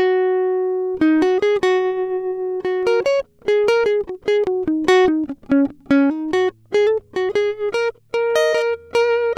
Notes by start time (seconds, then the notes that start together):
0.01 F#4
1.02 D#4
1.23 F#4
1.44 G#4
1.64 F#4
2.66 F#4
2.88 A#4
3.07 C#5
3.49 G#4
3.69 A#4
3.87 G#4
4.09 F#4
4.29 G#4
4.48 F#4
4.69 D#4
4.89 F#4
5.09 D#4
5.53 C#4
5.92 C#4
6.11 D#4
6.34 F#4
6.76 G#4
7.17 F#4
7.37 G#4
7.75 A#4
8.15 A#4
8.36 D#5
8.56 A#4
8.96 A#4